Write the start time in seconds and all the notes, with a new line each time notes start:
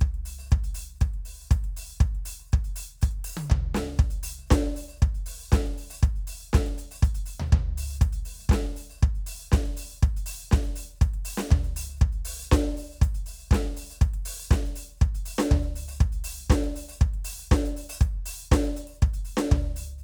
0.01 kick, closed hi-hat
0.15 closed hi-hat
0.26 open hi-hat
0.39 open hi-hat
0.47 hi-hat pedal
0.52 kick, closed hi-hat
0.64 closed hi-hat
0.75 open hi-hat
0.90 open hi-hat
0.96 hi-hat pedal
1.01 kick, closed hi-hat
1.14 closed hi-hat
1.26 open hi-hat
1.42 open hi-hat
1.47 hi-hat pedal
1.51 kick, closed hi-hat
1.64 closed hi-hat
1.77 open hi-hat
1.91 open hi-hat
1.97 kick, hi-hat pedal
2.02 closed hi-hat
2.15 closed hi-hat
2.26 open hi-hat
2.40 open hi-hat
2.49 hi-hat pedal
2.53 kick, closed hi-hat
2.65 closed hi-hat
2.76 open hi-hat
2.89 open hi-hat
2.98 closed hi-hat, hi-hat pedal
3.03 kick
3.11 closed hi-hat
3.25 open hi-hat
3.37 high tom
3.46 hi-hat pedal
3.50 kick, floor tom
3.75 snare
3.97 kick, hi-hat pedal
4.02 closed hi-hat
4.11 closed hi-hat
4.23 open hi-hat
4.39 open hi-hat
4.48 kick, snare, hi-hat pedal
4.77 open hi-hat
4.88 open hi-hat
4.97 hi-hat pedal
5.03 kick, closed hi-hat
5.15 closed hi-hat
5.26 open hi-hat
5.40 open hi-hat
5.50 kick, snare, hi-hat pedal
5.66 closed hi-hat
5.78 open hi-hat
5.91 open hi-hat
5.97 hi-hat pedal
6.03 kick, closed hi-hat
6.16 closed hi-hat
6.28 open hi-hat
6.40 open hi-hat
6.49 hi-hat pedal
6.54 kick, snare
6.67 closed hi-hat
6.78 open hi-hat
6.91 open hi-hat
6.97 hi-hat pedal
7.03 closed hi-hat, kick
7.15 closed hi-hat
7.26 open hi-hat
7.40 floor tom
7.47 hi-hat pedal
7.53 kick, floor tom
7.78 open hi-hat
7.90 open hi-hat
7.96 hi-hat pedal
8.02 kick, closed hi-hat
8.13 closed hi-hat
8.26 open hi-hat
8.40 open hi-hat
8.45 hi-hat pedal
8.50 kick, snare
8.65 closed hi-hat
8.77 open hi-hat
8.90 open hi-hat
8.98 hi-hat pedal
9.03 kick, closed hi-hat
9.15 closed hi-hat
9.27 open hi-hat
9.40 open hi-hat
9.48 snare, hi-hat pedal
9.53 kick
9.66 closed hi-hat
9.77 open hi-hat
9.92 open hi-hat
9.98 hi-hat pedal
10.03 kick, closed hi-hat
10.17 closed hi-hat
10.26 open hi-hat
10.40 open hi-hat
10.49 snare, hi-hat pedal
10.53 kick
10.64 closed hi-hat
10.76 open hi-hat
10.91 open hi-hat
10.96 hi-hat pedal
11.02 kick, closed hi-hat
11.14 closed hi-hat
11.25 open hi-hat
11.38 snare
11.48 kick, floor tom, hi-hat pedal
11.64 closed hi-hat
11.77 open hi-hat
11.89 open hi-hat
11.97 hi-hat pedal
12.02 kick, closed hi-hat
12.13 closed hi-hat
12.25 open hi-hat
12.40 open hi-hat
12.46 hi-hat pedal
12.52 kick, snare
12.77 open hi-hat
12.91 open hi-hat
12.97 hi-hat pedal
13.02 kick, closed hi-hat
13.15 closed hi-hat
13.26 open hi-hat
13.39 open hi-hat
13.51 kick, snare
13.65 closed hi-hat
13.77 open hi-hat
13.90 open hi-hat
13.96 hi-hat pedal
14.02 kick, closed hi-hat
14.14 closed hi-hat
14.26 open hi-hat
14.40 open hi-hat
14.47 hi-hat pedal
14.51 kick, snare
14.66 closed hi-hat
14.76 open hi-hat
14.90 open hi-hat
14.98 kick, hi-hat pedal
15.04 closed hi-hat
15.15 closed hi-hat
15.26 open hi-hat
15.39 snare
15.46 hi-hat pedal
15.51 kick, floor tom
15.63 closed hi-hat
15.76 open hi-hat
15.88 open hi-hat
15.96 hi-hat pedal
16.01 kick, closed hi-hat
16.13 closed hi-hat
16.24 open hi-hat
16.37 open hi-hat
16.46 hi-hat pedal
16.50 kick, snare
16.64 closed hi-hat
16.76 open hi-hat
16.89 open hi-hat
16.95 hi-hat pedal
17.01 kick, closed hi-hat
17.14 closed hi-hat
17.25 open hi-hat
17.40 open hi-hat
17.47 hi-hat pedal
17.52 kick, snare
17.66 closed hi-hat
17.77 open hi-hat
17.90 open hi-hat
17.96 hi-hat pedal
18.01 kick, closed hi-hat
18.26 open hi-hat
18.40 open hi-hat
18.46 hi-hat pedal
18.52 kick, snare
18.64 closed hi-hat
18.77 open hi-hat
18.88 open hi-hat
18.96 hi-hat pedal
19.02 kick, closed hi-hat
19.14 closed hi-hat
19.25 open hi-hat
19.38 snare
19.45 hi-hat pedal
19.52 kick, floor tom
19.77 open hi-hat
19.99 hi-hat pedal